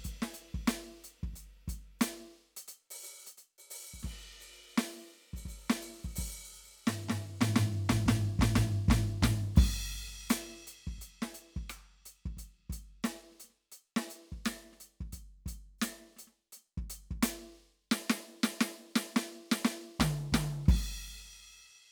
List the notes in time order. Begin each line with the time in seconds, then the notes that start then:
0.05 closed hi-hat, kick
0.23 snare
0.34 closed hi-hat
0.55 kick
0.68 closed hi-hat, snare
1.04 closed hi-hat
1.20 kick, snare
1.34 open hi-hat, kick
1.66 closed hi-hat, kick, snare, hi-hat pedal
2.00 closed hi-hat, snare, hi-hat pedal
2.24 hi-hat pedal
2.57 closed hi-hat
2.68 closed hi-hat
2.91 open hi-hat
3.04 open hi-hat
3.25 closed hi-hat, hi-hat pedal
3.38 closed hi-hat
3.59 open hi-hat
3.71 open hi-hat
3.94 kick
4.03 kick, snare, crash
4.12 snare
4.18 snare
4.41 open hi-hat
4.78 open hi-hat, snare
5.27 snare
5.34 open hi-hat, kick
5.46 open hi-hat, kick
5.70 snare
5.81 open hi-hat
6.00 snare
6.05 kick, snare
6.16 open hi-hat, kick
6.87 snare, floor tom
7.09 snare, floor tom
7.41 snare, floor tom
7.56 snare, floor tom
7.90 kick, snare, floor tom
8.07 kick, snare, floor tom
8.40 kick, snare, floor tom
8.56 kick, snare, floor tom
8.89 kick, snare, floor tom
9.23 kick, snare, floor tom
9.56 kick, snare, crash
10.30 open hi-hat, snare, hi-hat pedal
10.66 closed hi-hat, cross-stick
10.87 kick
10.99 closed hi-hat, kick
11.23 snare
11.35 closed hi-hat
11.57 kick
11.70 closed hi-hat, cross-stick
12.06 closed hi-hat
12.26 kick
12.38 closed hi-hat, kick
12.70 closed hi-hat, kick
13.03 closed hi-hat, snare, hi-hat pedal
13.32 snare
13.40 closed hi-hat
13.45 snare
13.50 snare
13.72 closed hi-hat
13.97 snare
14.10 closed hi-hat
14.32 kick
14.46 closed hi-hat, snare
14.73 snare
14.81 closed hi-hat
15.01 kick
15.13 closed hi-hat, kick
15.47 closed hi-hat, kick
15.79 closed hi-hat, snare, hi-hat pedal
16.17 closed hi-hat, snare
16.28 snare
16.53 closed hi-hat
16.57 snare
16.78 kick
16.90 closed hi-hat
17.11 kick
17.23 closed hi-hat, snare
17.92 snare
18.10 snare
18.44 snare
18.61 snare
18.96 snare
19.17 snare
19.52 snare
19.65 snare
20.00 kick, snare, mid tom
20.33 kick, snare, mid tom
20.66 kick, cross-stick, crash